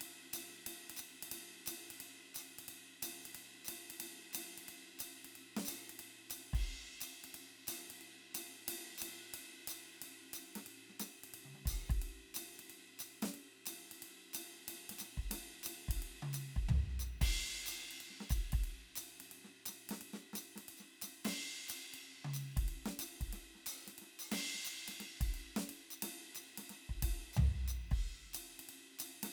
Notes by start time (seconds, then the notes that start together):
0.01 ride
0.33 hi-hat pedal, ride
0.66 ride
0.90 ride
0.97 hi-hat pedal, ride
1.23 ride
1.32 ride
1.66 hi-hat pedal, ride
1.90 ride
2.00 ride
2.35 hi-hat pedal, ride
2.59 ride
2.68 ride
3.02 hi-hat pedal, ride
3.22 hi-hat pedal, ride
3.35 ride
3.65 hi-hat pedal, ride
3.90 ride
4.00 ride
4.33 hi-hat pedal, ride
4.58 ride
4.68 ride
4.99 hi-hat pedal, ride
5.25 ride
5.35 ride
5.57 snare
5.65 hi-hat pedal, ride
5.90 ride
5.99 ride
6.26 snare
6.30 hi-hat pedal, ride
6.53 kick, ride
7.01 hi-hat pedal, ride
7.24 ride
7.34 ride
7.67 hi-hat pedal, ride
7.87 hi-hat pedal, ride
8.01 ride
8.35 hi-hat pedal, ride
8.68 ride
8.98 hi-hat pedal, ride
9.34 ride
9.67 hi-hat pedal, ride
10.02 ride
10.25 snare
10.33 hi-hat pedal, ride
10.55 snare, ride
10.66 ride
10.90 snare
11.00 snare, hi-hat pedal, ride
11.24 ride
11.34 ride
11.45 high tom
11.55 high tom
11.66 kick, hi-hat pedal, ride
11.90 kick, ride
12.02 ride
12.34 hi-hat pedal, ride
12.53 hi-hat pedal
12.59 ride
12.70 ride
12.99 hi-hat pedal, ride
13.22 snare, ride
13.34 ride
13.66 hi-hat pedal, ride
13.91 ride
14.02 ride
14.33 hi-hat pedal, ride
14.68 ride
14.89 snare, ride
14.99 snare, hi-hat pedal, ride
15.17 kick
15.31 snare, ride
15.63 hi-hat pedal, ride
15.88 kick, ride
16.02 ride
16.22 high tom
16.33 hi-hat pedal, ride
16.56 kick
16.69 floor tom
16.89 snare
16.99 snare, hi-hat pedal
17.21 kick, ride
17.59 snare
17.66 hi-hat pedal, ride
17.84 hi-hat pedal
17.91 ride
18.00 ride
18.10 snare
18.20 snare
18.30 kick, hi-hat pedal, ride
18.52 kick, ride
18.64 ride
18.96 hi-hat pedal, ride
19.20 ride
19.31 ride
19.44 snare
19.66 snare, hi-hat pedal, ride
19.89 snare, ride
20.01 ride
20.13 snare
20.33 snare, hi-hat pedal, ride
20.56 snare, hi-hat pedal, ride
20.68 ride
20.77 snare, hi-hat pedal
21.02 snare, hi-hat pedal, ride
21.25 snare, ride
21.68 hi-hat pedal, ride
21.94 ride
22.24 high tom
22.34 hi-hat pedal, ride
22.57 kick, ride
22.68 ride
22.86 snare
22.99 hi-hat pedal, ride
23.21 kick, ride
23.33 snare, ride
23.55 snare
23.66 hi-hat pedal, ride
23.87 snare, ride
23.98 snare, ride
24.19 hi-hat pedal
24.32 snare, ride
24.55 snare
24.65 hi-hat pedal, ride
24.88 snare, ride
25.00 snare, ride
25.21 kick, ride
25.34 ride
25.56 snare
25.69 ride
25.91 hi-hat pedal
26.02 snare, ride
26.35 hi-hat pedal, ride
26.58 snare, ride
26.70 snare, ride
26.89 kick
27.02 kick, ride
27.26 snare
27.33 floor tom, hi-hat pedal
27.58 snare
27.68 snare, hi-hat pedal
27.91 kick, crash
28.26 snare
28.34 hi-hat pedal, ride
28.59 ride
28.69 ride
28.99 hi-hat pedal, ride
29.23 snare, ride